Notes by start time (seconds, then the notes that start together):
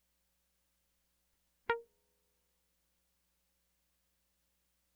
1.70 A#4